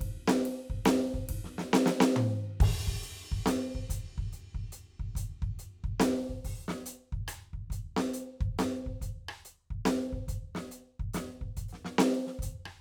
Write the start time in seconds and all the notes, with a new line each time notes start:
0.01 kick, ride
0.28 snare
0.46 ride
0.70 kick
0.86 snare, ride
1.14 kick
1.29 kick, ride
1.45 snare
1.59 snare
1.74 snare
1.86 snare
2.01 snare, hi-hat pedal
2.17 mid tom
2.61 kick, crash
2.88 kick
3.03 closed hi-hat
3.32 kick
3.46 closed hi-hat, snare
3.75 kick
3.90 closed hi-hat, kick
4.18 kick
4.33 closed hi-hat
4.55 kick
4.73 closed hi-hat
5.00 kick
5.16 closed hi-hat, kick
5.43 kick
5.59 closed hi-hat
5.84 kick
6.00 closed hi-hat, snare
6.30 kick
6.45 open hi-hat, kick
6.63 hi-hat pedal
6.69 snare
6.86 closed hi-hat
7.13 kick
7.28 closed hi-hat, cross-stick
7.41 hi-hat pedal
7.54 kick
7.71 closed hi-hat, kick
7.97 snare
8.14 closed hi-hat
8.41 kick
8.59 closed hi-hat, snare
8.87 kick
9.02 closed hi-hat, kick
9.29 cross-stick
9.46 closed hi-hat
9.71 kick
9.86 closed hi-hat, snare
10.13 kick
10.29 closed hi-hat, kick
10.56 snare
10.72 closed hi-hat
11.00 kick
11.14 closed hi-hat, snare
11.42 kick
11.57 closed hi-hat, kick
11.69 hi-hat pedal
11.73 snare
11.85 snare
11.99 snare
12.13 open hi-hat, hi-hat pedal
12.27 snare
12.39 closed hi-hat, kick
12.46 kick
12.66 cross-stick